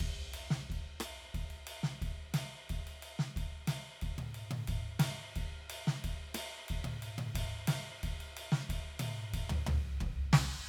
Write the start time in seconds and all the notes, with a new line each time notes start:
0.01 kick, ride
0.34 ride
0.51 snare
0.71 kick, ride
1.01 cross-stick, ride
1.35 kick, ride
1.51 ride
1.67 ride
1.84 snare
2.02 kick, ride
2.34 snare, ride
2.70 kick, ride
2.88 ride
3.03 ride
3.20 snare
3.37 kick, ride
3.68 snare, ride
4.02 kick, ride
4.19 high tom
4.35 ride
4.51 high tom
4.68 kick, ride
5.00 snare, ride
5.36 kick, ride
5.70 ride
5.88 snare
6.05 kick, ride
6.35 cross-stick, ride
6.69 kick, ride
6.85 high tom
7.03 ride
7.19 high tom, percussion
7.35 kick, ride
7.68 snare, ride
8.04 kick, ride
8.21 ride
8.37 ride
8.52 snare
8.70 kick, ride
9.00 high tom, ride
9.34 kick, ride
9.50 floor tom
9.67 floor tom
10.01 kick, floor tom
10.33 snare, crash